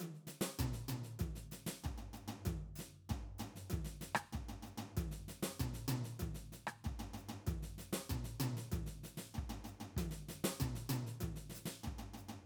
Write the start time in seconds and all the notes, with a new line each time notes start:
0.00 high tom
0.14 snare
0.27 snare, hi-hat pedal
0.41 snare
0.59 kick, mid tom
0.68 kick
0.73 snare
0.88 hi-hat pedal, mid tom
1.03 snare
1.19 kick, high tom
1.27 kick
1.35 snare
1.51 snare, hi-hat pedal
1.66 snare
1.84 kick, floor tom
1.93 kick
1.98 floor tom
2.13 floor tom, hi-hat pedal
2.28 floor tom
2.45 kick, high tom
2.53 kick
2.76 snare, hi-hat pedal
3.09 kick, floor tom
3.38 floor tom, hi-hat pedal
3.56 snare
3.70 kick, high tom
3.79 kick
3.85 snare
4.01 snare, hi-hat pedal
4.15 cross-stick
4.33 kick, floor tom
4.42 kick
4.48 floor tom
4.62 floor tom, hi-hat pedal
4.77 floor tom
4.97 kick, high tom
5.05 kick
5.11 snare
5.28 snare, hi-hat pedal
5.43 snare
5.60 kick, mid tom
5.66 kick
5.74 snare
5.88 hi-hat pedal, mid tom
6.04 snare
6.19 kick, high tom
6.34 snare
6.52 snare, hi-hat pedal
6.67 cross-stick
6.84 kick, floor tom
6.92 kick
6.99 floor tom
7.13 floor tom, hi-hat pedal
7.29 floor tom
7.47 kick, high tom
7.55 kick
7.57 kick
7.62 snare
7.78 snare, hi-hat pedal
7.93 snare
8.09 kick, mid tom
8.24 snare
8.40 hi-hat pedal, mid tom
8.57 snare
8.72 kick, high tom
8.79 kick
8.86 snare
9.03 snare, hi-hat pedal
9.17 snare
9.34 kick, floor tom
9.49 floor tom
9.64 floor tom, hi-hat pedal
9.80 floor tom
9.97 kick, high tom
10.03 kick
10.11 snare
10.29 snare, hi-hat pedal
10.44 snare
10.60 kick, mid tom
10.68 kick
10.75 snare
10.89 hi-hat pedal, mid tom
11.06 snare
11.20 kick, high tom
11.36 snare
11.50 snare
11.55 snare, hi-hat pedal
11.65 snare
11.83 kick, floor tom
11.98 floor tom
12.14 floor tom, hi-hat pedal
12.29 floor tom